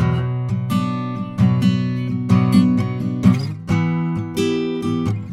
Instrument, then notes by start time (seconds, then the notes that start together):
acoustic guitar
0.00 E2 B2 F#3
0.50 B2 F#3
0.71 B2 F#3 B3 D4
1.17 B2 F#3 B3
1.36 B2 D4
1.40 F#3 B3
1.63 B2 F#3 B3
2.09 B2 F#3 B3
2.31 B2 F#3 B3
2.35 D4
2.54 B2 F#3 B3 D4
2.79 B2 F#3 B3
3.01 B2 F#3 B3 D4
3.26 F#3 D4
3.70 E3 B3 E4
4.18 E3 B3
4.36 B3 E4 G4 B4
4.82 E4 G4
4.87 E3 B3